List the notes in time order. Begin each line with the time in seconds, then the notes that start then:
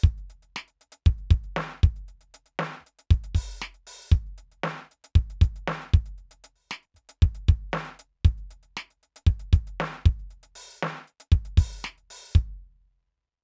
0.01 kick, hi-hat pedal
0.05 closed hi-hat
0.18 closed hi-hat
0.30 closed hi-hat
0.42 closed hi-hat
0.56 snare
0.68 closed hi-hat
0.81 closed hi-hat
0.92 closed hi-hat
1.06 kick, closed hi-hat
1.18 closed hi-hat
1.30 kick, closed hi-hat
1.44 closed hi-hat
1.56 snare
1.70 closed hi-hat
1.83 closed hi-hat, kick
1.96 closed hi-hat
2.08 closed hi-hat
2.21 closed hi-hat
2.34 closed hi-hat
2.46 closed hi-hat
2.59 snare
2.74 closed hi-hat
2.80 kick
2.86 closed hi-hat
2.99 closed hi-hat
3.11 kick, closed hi-hat
3.24 closed hi-hat
3.35 open hi-hat, kick
3.50 open hi-hat
3.60 snare, hi-hat pedal
3.74 closed hi-hat
3.87 open hi-hat
4.01 open hi-hat
4.09 kick, hi-hat pedal
4.15 closed hi-hat
4.26 closed hi-hat
4.38 closed hi-hat
4.51 closed hi-hat
4.63 snare
4.78 closed hi-hat
4.91 closed hi-hat
5.04 closed hi-hat
5.15 kick, closed hi-hat
5.30 closed hi-hat
5.41 closed hi-hat, kick
5.56 closed hi-hat
5.68 snare
5.81 closed hi-hat
5.94 closed hi-hat, kick
6.06 closed hi-hat
6.18 closed hi-hat
6.31 closed hi-hat
6.44 open hi-hat
6.56 open hi-hat
6.69 snare, hi-hat pedal
6.83 closed hi-hat
6.94 closed hi-hat, kick
7.09 closed hi-hat
7.22 kick, closed hi-hat
7.35 closed hi-hat
7.48 open hi-hat, kick
7.72 snare, hi-hat pedal
7.85 closed hi-hat
7.99 closed hi-hat
8.25 closed hi-hat, kick
8.38 closed hi-hat
8.51 closed hi-hat
8.63 closed hi-hat
8.77 snare
8.90 closed hi-hat
9.03 closed hi-hat
9.16 closed hi-hat
9.26 kick, closed hi-hat
9.39 closed hi-hat
9.53 closed hi-hat, kick
9.67 closed hi-hat
9.80 snare
9.93 closed hi-hat
10.06 kick, closed hi-hat
10.19 closed hi-hat
10.30 closed hi-hat
10.43 closed hi-hat
10.55 open hi-hat
10.69 open hi-hat
10.79 snare, hi-hat pedal
10.95 closed hi-hat
11.07 closed hi-hat
11.20 closed hi-hat
11.32 kick, closed hi-hat
11.45 closed hi-hat
11.57 open hi-hat, kick
11.73 open hi-hat
11.83 snare, hi-hat pedal
11.98 closed hi-hat
12.10 open hi-hat
12.32 kick, hi-hat pedal